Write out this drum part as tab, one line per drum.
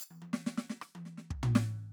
Percussion |x---------------|
Snare      |---oooor-gg--o--|
High tom   |-go-----o-------|
Floor tom  |------------o---|
Kick       |-----------o----|